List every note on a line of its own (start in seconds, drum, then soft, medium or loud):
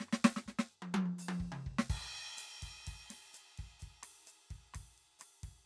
0.01 snare soft
0.09 cross-stick soft
0.13 snare medium
0.25 kick soft
0.25 snare loud
0.37 snare medium
0.47 kick soft
0.47 snare soft
0.60 snare medium
0.83 high tom medium
0.95 high tom loud
1.06 high tom soft
1.19 hi-hat pedal medium
1.19 high tom soft
1.29 high tom loud
1.41 kick soft
1.46 kick soft
1.53 mid tom medium
1.67 kick soft
1.72 kick soft
1.79 snare medium
1.90 kick medium
1.90 ride loud
1.97 kick soft
2.38 hi-hat pedal loud
2.38 ride medium
2.57 cross-stick soft
2.63 kick soft
2.63 ride medium
2.69 kick soft
2.85 kick soft
2.85 hi-hat pedal soft
2.85 ride medium
2.94 kick soft
3.11 snare soft
3.11 ride medium
3.34 hi-hat pedal medium
3.34 ride soft
3.58 kick soft
3.58 ride soft
3.65 kick soft
3.80 kick soft
3.80 hi-hat pedal soft
3.80 ride soft
3.88 kick soft
4.04 cross-stick soft
4.04 ride medium
4.27 hi-hat pedal medium
4.27 ride soft
4.51 kick soft
4.51 ride soft
4.56 kick soft
4.74 kick soft
4.74 cross-stick soft
4.74 snare soft
4.74 hi-hat pedal soft
4.74 ride medium
4.81 kick soft
4.99 ride soft
5.20 cross-stick soft
5.20 hi-hat pedal medium
5.20 ride medium
5.44 kick soft
5.44 ride soft
5.49 kick soft